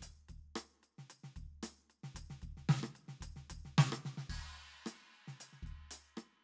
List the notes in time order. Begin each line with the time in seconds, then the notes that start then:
0.01 kick, percussion
0.29 kick, percussion
0.56 cross-stick, percussion
0.83 percussion
0.99 snare
1.10 percussion
1.24 snare
1.36 kick, percussion
1.63 cross-stick, percussion
1.90 percussion
2.04 snare
2.15 kick, percussion
2.30 snare
2.42 kick, percussion
2.57 snare
2.69 snare
2.83 cross-stick
2.96 percussion
3.09 snare
3.21 kick, percussion
3.37 snare
3.50 kick, percussion
3.66 snare
3.78 snare
3.93 cross-stick
4.06 snare
4.18 snare
4.30 kick, crash
4.86 cross-stick, percussion
5.15 percussion
5.28 snare
5.41 percussion
5.53 snare
5.63 kick, percussion
5.91 percussion
6.17 cross-stick, percussion